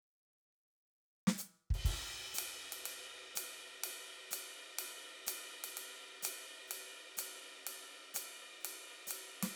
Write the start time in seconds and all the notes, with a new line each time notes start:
1.27 snare
1.38 hi-hat pedal
1.70 kick, ride
1.85 kick, crash
2.34 hi-hat pedal
2.38 ride
2.72 ride
2.85 ride
3.35 hi-hat pedal, ride
3.83 hi-hat pedal, ride
4.31 hi-hat pedal, ride
4.79 ride
5.26 hi-hat pedal, ride
5.64 ride
5.77 ride
6.22 hi-hat pedal, ride
6.67 hi-hat pedal, ride
7.17 hi-hat pedal, ride
7.67 ride
8.14 hi-hat pedal, ride
8.60 hi-hat pedal
8.65 ride
9.07 hi-hat pedal, ride
9.43 snare, ride